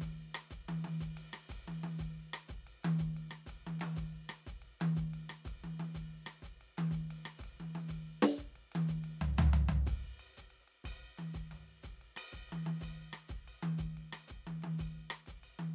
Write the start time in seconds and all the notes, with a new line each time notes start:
0.01 kick, hi-hat pedal, ride
0.35 cross-stick, ride
0.50 kick, hi-hat pedal
0.68 high tom, ride
0.84 high tom, ride
1.01 kick, hi-hat pedal
1.17 ride
1.33 cross-stick
1.49 kick, hi-hat pedal, ride
1.68 high tom
1.84 high tom, ride
1.99 kick, hi-hat pedal, ride
2.20 hi-hat pedal
2.34 cross-stick, ride
2.48 kick, hi-hat pedal
2.67 ride
2.84 high tom, ride
2.99 kick, hi-hat pedal
3.17 ride
3.31 cross-stick
3.46 kick, hi-hat pedal, ride
3.67 high tom
3.80 high tom, ride
3.96 kick, hi-hat pedal, ride
4.29 cross-stick, ride
4.47 kick, hi-hat pedal
4.62 ride
4.80 high tom, ride
4.96 kick, hi-hat pedal
5.14 ride
5.30 cross-stick
5.45 kick, hi-hat pedal, ride
5.64 high tom
5.80 high tom, ride
5.94 kick, hi-hat pedal, ride
6.26 cross-stick, ride
6.42 kick, hi-hat pedal
6.61 ride
6.78 high tom, ride
6.91 kick, hi-hat pedal
7.11 ride
7.25 cross-stick
7.39 kick, hi-hat pedal
7.44 ride
7.60 high tom
7.75 high tom, ride
7.88 kick, hi-hat pedal, ride
8.22 snare, ride
8.38 kick, hi-hat pedal
8.56 ride
8.72 high tom, ride
8.88 kick, hi-hat pedal
9.04 ride
9.10 hi-hat pedal
9.21 floor tom
9.37 floor tom, hi-hat pedal
9.53 floor tom
9.69 floor tom
9.86 kick, hi-hat pedal, ride
10.09 hi-hat pedal
10.20 ride bell
10.37 kick, hi-hat pedal
10.50 ride
10.60 hi-hat pedal
10.68 ride
10.84 kick, hi-hat pedal, ride bell
11.18 high tom, ride
11.34 kick, hi-hat pedal, ride
11.51 snare, ride, floor tom
11.83 kick, hi-hat pedal, ride
12.01 ride
12.16 cross-stick, ride bell
12.32 kick, hi-hat pedal
12.49 high tom, ride
12.53 hi-hat pedal
12.66 high tom, ride
12.81 kick, hi-hat pedal, ride bell
13.13 cross-stick, ride
13.29 kick, hi-hat pedal, ride
13.48 ride bell
13.63 high tom
13.78 kick, hi-hat pedal, ride bell
13.97 hi-hat pedal, ride
14.13 cross-stick, ride bell
14.28 kick, hi-hat pedal
14.47 high tom, ride
14.62 high tom, ride
14.79 kick, hi-hat pedal, ride bell
15.10 cross-stick, ride
15.26 kick, hi-hat pedal, ride
15.43 ride bell
15.59 high tom